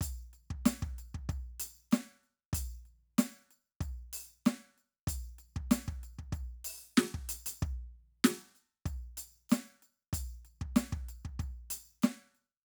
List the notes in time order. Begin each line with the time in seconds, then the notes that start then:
0.01 kick, percussion
0.33 percussion
0.51 kick
0.66 snare, percussion
0.82 kick
0.99 percussion
1.15 kick
1.29 kick, percussion
1.60 percussion
1.92 snare, percussion
1.93 percussion
2.24 percussion
2.53 kick, percussion
2.86 percussion
3.18 snare, percussion
3.51 percussion
3.81 kick, percussion
4.13 percussion
4.46 snare, percussion
4.78 percussion
5.07 kick, percussion
5.39 percussion
5.56 kick
5.71 snare, percussion
5.88 kick
6.03 percussion
6.19 kick
6.33 kick, percussion
6.65 percussion
6.97 snare, percussion
7.14 kick
7.29 percussion
7.46 percussion
7.62 kick
8.24 snare, percussion
8.55 percussion
8.86 kick, percussion
9.17 percussion
9.50 snare, percussion
9.52 percussion
9.83 percussion
10.13 kick, percussion
10.45 percussion
10.61 kick
10.76 snare, percussion
10.93 kick
11.09 percussion
11.25 kick
11.39 kick, percussion
11.71 percussion
12.03 snare, percussion
12.35 percussion